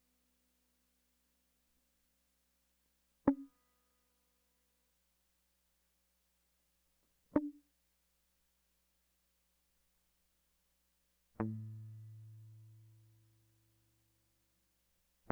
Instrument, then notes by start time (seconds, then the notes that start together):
electric guitar
3.29 C#4
7.37 D4
11.41 A2